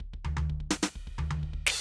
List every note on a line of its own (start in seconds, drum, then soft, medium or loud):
0.04 kick soft
0.13 kick soft
0.25 floor tom loud
0.25 high tom medium
0.37 floor tom medium
0.37 high tom loud
0.50 kick soft
0.60 kick soft
0.71 snare loud
0.71 ride soft
0.83 snare loud
0.83 ride medium
0.95 kick soft
1.07 kick soft
1.18 floor tom loud
1.18 high tom medium
1.31 floor tom loud
1.31 high tom loud
1.43 kick soft
1.53 kick soft
1.67 snare loud
1.67 crash loud